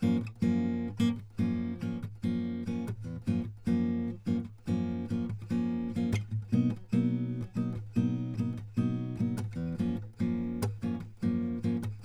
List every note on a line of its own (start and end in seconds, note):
0.01 0.25 F#2
0.01 0.25 F3
0.01 0.25 A#3
0.01 0.28 C#4
0.43 0.94 F#2
0.43 0.95 F3
0.43 0.93 A#3
0.43 0.96 C#4
1.01 1.14 F#2
1.01 1.22 F3
1.01 1.15 A#3
1.01 1.24 C#4
1.39 1.79 F#2
1.39 1.82 F3
1.39 1.77 A#3
1.39 1.77 C#4
1.82 2.08 F#2
1.82 2.05 F3
1.82 2.02 A#3
1.82 2.10 C#4
2.24 2.68 F#2
2.24 2.65 F3
2.24 2.66 A#3
2.24 2.63 C#4
2.68 2.90 F#2
2.68 2.92 F3
2.68 2.92 A#3
2.68 2.94 C#4
3.05 3.21 E2
3.28 3.50 F#2
3.28 3.50 F3
3.28 3.50 A#3
3.28 3.49 C#4
3.68 4.14 F#2
3.68 4.21 F3
3.68 4.15 A#3
3.68 4.16 C#4
4.27 4.51 F#2
4.27 4.49 F3
4.27 4.44 A#3
4.27 4.51 C#4
4.68 5.08 F#2
4.68 5.08 F3
4.68 5.08 A#3
4.68 5.09 C#4
5.11 5.35 F#2
5.11 5.33 F3
5.11 5.34 A#3
5.11 5.35 C#4
5.52 5.92 F#2
5.52 5.93 F3
5.52 5.93 A#3
5.52 5.95 C#4
5.96 6.16 F#2
5.96 6.18 F3
5.96 6.18 A#3
5.96 6.17 C#4
6.32 6.42 A2
6.54 6.76 B2
6.54 6.74 G3
6.54 6.75 A#3
6.54 6.75 D#4
6.93 7.45 B2
6.93 7.46 F#3
6.93 7.46 A#3
6.93 7.44 D#4
7.56 7.79 B2
7.56 7.83 F#3
7.56 7.82 A#3
7.56 7.79 D#4
7.97 8.35 B2
7.97 8.38 F#3
7.97 8.31 A#3
7.97 8.37 D#4
8.35 8.57 B2
8.40 8.58 F#3
8.40 8.63 A#3
8.40 8.61 D#4
8.78 9.16 B2
8.78 9.21 F#3
8.78 9.13 A#3
8.78 9.18 D#4
9.17 9.50 B2
9.17 9.41 D#4
9.22 9.50 F#3
9.22 9.44 A#3
9.57 9.77 E2
9.80 10.02 F#2
9.80 10.02 F3
9.80 10.02 A#3
9.80 10.02 C#4
10.20 10.74 F#2
10.20 10.66 F3
10.20 10.68 A#3
10.20 10.67 C#4
10.83 11.06 F#2
10.83 11.05 F3
10.83 11.09 A#3
10.83 11.04 C#4
11.24 11.62 F#2
11.24 11.61 F3
11.24 11.61 A#3
11.24 11.59 C#4
11.64 11.80 F#2
11.64 11.81 F3
11.64 11.82 A#3
11.64 11.84 C#4